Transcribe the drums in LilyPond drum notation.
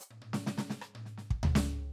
\new DrumStaff \drummode { \time 4/4 \tempo 4 = 125 hhp16 tommh16 tommh16 sn16 sn16 sn16 sn16 ss16 tommh16 sn16 sn16 bd16 tomfh16 sn8. | }